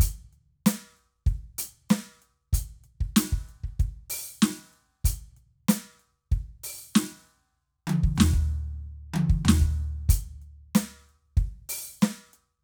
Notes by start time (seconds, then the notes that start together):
0.01 closed hi-hat, kick
0.34 closed hi-hat
0.68 closed hi-hat, snare
0.98 closed hi-hat
1.28 kick, closed hi-hat
1.60 open hi-hat
1.91 snare, closed hi-hat, hi-hat pedal
2.23 closed hi-hat
2.54 closed hi-hat, kick
2.85 closed hi-hat
3.02 kick
3.18 closed hi-hat, snare
3.34 kick
3.50 closed hi-hat
3.65 kick
3.81 kick, closed hi-hat
4.11 open hi-hat
4.43 snare, hi-hat pedal
4.74 closed hi-hat
5.06 closed hi-hat, kick
5.38 closed hi-hat
5.70 closed hi-hat, snare
6.01 closed hi-hat
6.33 kick, closed hi-hat
6.65 open hi-hat
6.96 closed hi-hat, snare, hi-hat pedal
7.89 hi-hat pedal, mid tom, high tom
8.05 kick
8.17 floor tom, hi-hat pedal
8.22 snare
8.35 kick
9.15 mid tom, high tom
9.31 kick
9.46 snare, floor tom
9.63 kick
10.10 closed hi-hat, kick
10.43 closed hi-hat
10.76 closed hi-hat, snare
11.10 closed hi-hat
11.38 kick, closed hi-hat
11.71 open hi-hat
12.03 snare, closed hi-hat, hi-hat pedal
12.35 closed hi-hat